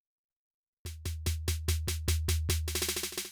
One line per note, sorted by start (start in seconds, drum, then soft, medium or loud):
0.85 snare medium
0.85 floor tom medium
1.06 snare medium
1.06 floor tom medium
1.26 snare loud
1.26 floor tom loud
1.48 snare loud
1.48 floor tom loud
1.68 snare loud
1.68 floor tom loud
1.88 snare loud
1.88 floor tom loud
2.08 snare loud
2.08 floor tom loud
2.28 snare loud
2.28 floor tom loud
2.49 snare loud
2.49 floor tom loud
2.68 snare medium
2.75 snare loud
2.82 snare loud
2.89 snare loud
2.96 snare loud
3.03 snare loud
3.12 snare medium
3.18 snare loud
3.25 snare medium